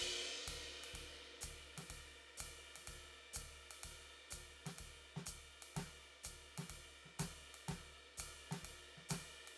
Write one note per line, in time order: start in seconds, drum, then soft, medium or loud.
0.01 kick soft
0.01 ride soft
0.48 kick soft
0.48 hi-hat pedal soft
0.48 ride medium
0.82 snare soft
0.82 ride medium
0.94 kick soft
0.94 ride medium
1.41 kick soft
1.41 hi-hat pedal medium
1.41 ride medium
1.77 snare soft
1.77 ride medium
1.90 kick soft
1.90 ride medium
2.37 kick soft
2.37 hi-hat pedal medium
2.37 ride medium
2.76 snare soft
2.76 ride medium
2.87 kick soft
2.87 ride medium
3.33 kick soft
3.33 hi-hat pedal medium
3.33 ride medium
3.71 ride medium
3.83 kick soft
3.83 ride medium
4.30 kick soft
4.30 hi-hat pedal medium
4.30 ride medium
4.66 snare soft
4.66 ride medium
4.78 kick soft
4.78 ride medium
5.16 snare soft
5.26 kick soft
5.26 hi-hat pedal medium
5.26 ride medium
5.62 ride medium
5.73 kick soft
5.73 snare soft
5.73 hi-hat pedal soft
5.73 ride medium
6.24 kick soft
6.24 hi-hat pedal medium
6.24 ride medium
6.58 snare soft
6.58 ride medium
6.70 kick soft
6.70 ride medium
7.05 snare soft
7.19 kick soft
7.19 snare soft
7.19 hi-hat pedal medium
7.19 ride medium
7.54 ride soft
7.68 kick soft
7.68 snare soft
7.68 ride medium
8.17 kick soft
8.17 hi-hat pedal medium
8.17 ride medium
8.51 snare soft
8.51 ride medium
8.63 kick soft
8.63 ride medium
8.97 snare soft
9.09 kick soft
9.09 snare soft
9.09 hi-hat pedal medium
9.09 ride medium
9.47 ride soft
9.54 hi-hat pedal soft